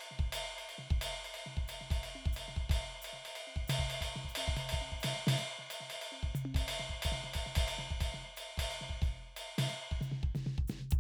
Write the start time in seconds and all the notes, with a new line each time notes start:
0.01 ride
0.11 snare
0.19 kick
0.33 hi-hat pedal, ride
0.58 ride
0.69 ride
0.79 snare
0.91 kick
1.02 hi-hat pedal, ride
1.25 ride
1.34 ride
1.46 snare
1.57 kick
1.68 hi-hat pedal, ride
1.81 snare
1.91 kick, ride
2.04 ride
2.16 high tom
2.26 kick
2.33 hi-hat pedal, ride
2.49 snare
2.57 kick
2.70 kick, ride
3.02 hi-hat pedal, ride
3.13 snare
3.25 ride
3.36 ride
3.48 high tom
3.56 kick
3.68 floor tom, hi-hat pedal, ride
3.79 kick
3.90 ride
4.01 kick, ride
4.16 snare
4.25 kick
4.29 hi-hat pedal
4.36 high tom, ride
4.48 kick
4.57 floor tom, ride
4.69 kick, ride
4.82 high tom
4.92 kick
5.00 hi-hat pedal, ride
5.05 snare
5.27 snare, ride
5.38 ride
5.59 snare
5.71 hi-hat pedal, ride
5.81 snare
5.90 ride
6.02 ride
6.12 high tom
6.23 kick
6.35 floor tom, hi-hat pedal
6.46 high tom
6.55 kick, ride
6.68 ride
6.80 snare
6.90 kick
7.03 kick, hi-hat pedal, ride
7.12 snare
7.24 snare
7.34 kick, ride
7.47 snare
7.56 kick, ride
7.68 ride
7.79 snare
7.91 kick
8.01 kick, ride
8.14 snare
8.37 hi-hat pedal, ride
8.58 kick, ride
8.71 ride
8.82 snare
8.90 kick
9.02 kick, ride
9.18 snare
9.37 hi-hat pedal, ride
9.58 snare, ride
9.69 ride
9.92 kick
10.01 snare, floor tom, hi-hat pedal
10.12 snare, floor tom
10.23 kick
10.35 snare, floor tom, hi-hat pedal
10.47 snare, floor tom
10.58 kick
10.68 snare, floor tom, hi-hat pedal
10.91 open hi-hat, kick